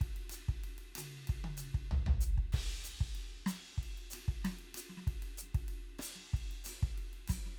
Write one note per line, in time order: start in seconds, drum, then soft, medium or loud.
0.01 kick medium
0.01 ride medium
0.16 ride medium
0.30 hi-hat pedal loud
0.30 ride medium
0.49 kick soft
0.64 ride medium
0.78 ride medium
0.96 hi-hat pedal loud
0.96 high tom medium
0.96 ride loud
1.27 kick soft
1.27 ride medium
1.44 high tom medium
1.57 hi-hat pedal medium
1.57 ride medium
1.74 kick soft
1.91 floor tom loud
2.07 floor tom loud
2.21 hi-hat pedal loud
2.21 ride medium
2.38 kick soft
2.53 kick medium
2.53 crash medium
2.53 ride medium
2.84 hi-hat pedal loud
2.84 ride soft
3.01 kick medium
3.15 ride medium
3.46 snare medium
3.46 hi-hat pedal loud
3.46 ride medium
3.78 kick soft
3.83 ride medium
3.98 ride medium
4.11 hi-hat pedal loud
4.11 ride loud
4.28 kick soft
4.45 snare medium
4.45 ride medium
4.59 ride medium
4.75 hi-hat pedal loud
4.75 ride loud
4.89 snare soft
4.97 snare soft
5.02 snare soft
5.07 kick soft
5.07 ride medium
5.22 ride medium
5.38 hi-hat pedal loud
5.43 snare soft
5.55 kick medium
5.55 ride medium
5.68 ride medium
5.99 kick soft
5.99 cross-stick medium
5.99 hi-hat pedal loud
5.99 ride medium
6.16 snare soft
6.34 kick medium
6.34 ride soft
6.51 ride medium
6.64 hi-hat pedal loud
6.64 ride medium
6.83 kick medium
6.83 snare soft
6.98 ride medium
7.13 ride medium
7.28 kick medium
7.28 snare medium
7.28 hi-hat pedal medium
7.28 ride medium
7.46 snare soft